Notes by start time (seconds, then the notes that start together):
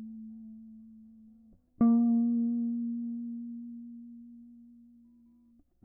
1.81 A#3